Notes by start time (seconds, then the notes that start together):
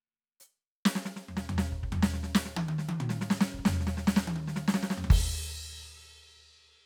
0.40 hi-hat pedal
0.85 snare
0.95 snare
1.16 snare
1.29 floor tom
1.37 snare
1.49 floor tom
1.58 snare
1.72 kick
1.83 kick
1.92 floor tom
2.03 snare
2.14 snare
2.23 snare
2.35 snare
2.45 snare
2.57 high tom
2.69 high tom
2.78 snare
2.89 high tom
3.00 mid tom
3.09 snare
3.21 snare
3.30 snare
3.41 snare
3.54 kick
3.59 kick
3.65 snare, floor tom, hi-hat pedal
3.80 snare
3.87 snare
3.97 snare
4.07 snare, hi-hat pedal
4.16 snare
4.27 high tom
4.36 high tom
4.48 snare
4.56 snare
4.68 snare
4.74 snare
4.83 snare
4.90 snare
4.98 floor tom
5.04 floor tom
5.10 kick, crash